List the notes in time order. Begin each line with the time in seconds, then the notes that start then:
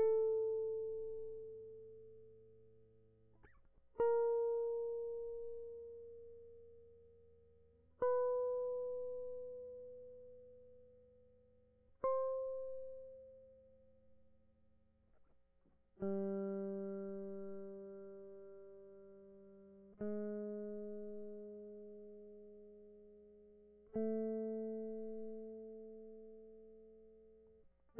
0.00 A4
4.01 A#4
8.03 B4
12.05 C5
16.03 G3
20.02 G#3
23.97 A3